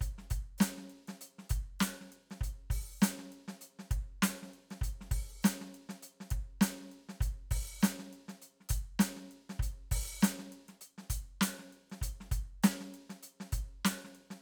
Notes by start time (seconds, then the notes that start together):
0.01 closed hi-hat, kick
0.18 snare
0.30 closed hi-hat, kick
0.58 closed hi-hat, snare, hi-hat pedal
0.78 snare
0.90 closed hi-hat
1.08 snare, closed hi-hat
1.21 closed hi-hat
1.39 snare
1.50 closed hi-hat, kick
1.80 closed hi-hat, snare, hi-hat pedal
2.01 snare
2.12 closed hi-hat
2.30 snare, closed hi-hat
2.41 closed hi-hat, kick
2.70 open hi-hat, kick
3.02 closed hi-hat, snare, hi-hat pedal
3.19 snare
3.32 closed hi-hat
3.48 snare, closed hi-hat
3.61 closed hi-hat
3.79 snare
3.91 kick, closed hi-hat
4.22 closed hi-hat, snare
4.43 snare
4.54 closed hi-hat
4.71 snare, closed hi-hat
4.82 closed hi-hat, kick
5.01 snare
5.11 kick, open hi-hat
5.43 closed hi-hat, snare, hi-hat pedal
5.61 snare
5.75 closed hi-hat
5.89 snare, closed hi-hat
6.03 closed hi-hat
6.21 snare
6.31 kick, closed hi-hat
6.61 closed hi-hat, snare
6.81 snare
6.92 closed hi-hat
7.09 snare, closed hi-hat
7.21 closed hi-hat, kick
7.51 open hi-hat, kick
7.81 closed hi-hat, snare, hi-hat pedal
7.99 snare
8.13 closed hi-hat
8.29 snare, closed hi-hat
8.42 closed hi-hat
8.61 snare
8.69 closed hi-hat, kick
9.00 closed hi-hat, snare
9.17 snare
9.31 closed hi-hat
9.50 snare, closed hi-hat
9.60 closed hi-hat, kick
9.92 open hi-hat, kick
10.21 closed hi-hat, snare, hi-hat pedal
10.39 snare
10.52 closed hi-hat
10.69 snare, closed hi-hat
10.81 closed hi-hat
10.98 snare
11.10 closed hi-hat, kick
11.41 closed hi-hat, snare
11.59 snare
11.73 closed hi-hat
11.90 snare, closed hi-hat
12.02 closed hi-hat, kick
12.21 snare
12.32 open hi-hat, kick
12.63 closed hi-hat, snare, hi-hat pedal
12.81 snare
12.94 closed hi-hat
13.10 snare, closed hi-hat
13.23 closed hi-hat
13.40 snare
13.53 closed hi-hat, kick
13.85 closed hi-hat, snare
14.04 snare
14.15 closed hi-hat
14.31 snare, closed hi-hat